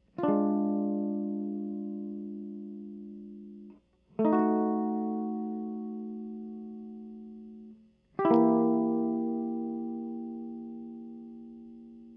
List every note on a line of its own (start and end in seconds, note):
0.19 3.75 F4
0.24 3.80 D4
0.29 3.81 G#3
4.20 7.77 A3
4.25 7.74 D#4
4.33 7.74 F#4
8.19 12.17 G4
8.25 12.17 E4
8.31 12.17 A#3
8.36 8.45 E2
8.45 10.43 E3